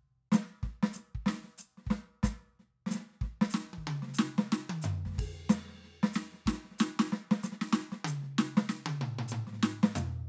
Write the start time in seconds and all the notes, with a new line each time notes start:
0.32 snare, hi-hat pedal
0.35 snare
0.48 snare
0.54 snare
0.63 kick, snare
0.67 snare
0.83 snare
0.94 snare, hi-hat pedal
1.15 kick
1.27 snare
1.29 snare
1.34 snare
1.44 snare
1.58 snare, hi-hat pedal
1.78 snare
1.83 snare
1.86 kick, snare
1.89 snare
1.91 snare
2.24 kick, cross-stick, snare, hi-hat pedal
2.60 snare
2.87 snare
2.91 snare, hi-hat pedal
2.95 snare
2.99 snare
3.03 snare
3.07 snare
3.12 snare
3.17 snare
3.22 kick, snare
3.42 snare
3.50 hi-hat pedal
3.54 snare
3.74 high tom
3.78 kick
3.88 high tom
4.03 snare
4.08 snare
4.12 snare, hi-hat pedal
4.17 snare
4.19 snare
4.39 snare
4.53 snare
4.70 high tom
4.82 floor tom, hi-hat pedal
5.06 kick, snare
5.10 snare
5.14 snare
5.16 snare
5.18 kick, snare, ride
5.50 snare, hi-hat pedal
5.69 snare
5.74 snare
5.78 snare
5.82 snare
5.84 snare
6.04 snare
6.14 snare, hi-hat pedal
6.34 snare
6.47 kick, snare
6.53 snare
6.65 snare
6.72 snare
6.76 snare, hi-hat pedal
6.79 snare
7.00 snare
7.13 snare
7.32 snare
7.44 snare, hi-hat pedal
7.53 snare
7.62 snare
7.73 snare
7.92 snare
8.05 hi-hat pedal, high tom
8.23 snare
8.39 snare
8.58 snare
8.70 snare, hi-hat pedal
8.87 high tom
9.02 mid tom
9.19 mid tom
9.28 hi-hat pedal
9.33 mid tom
9.47 snare
9.53 snare
9.58 snare
9.63 snare
9.84 snare
9.96 hi-hat pedal, floor tom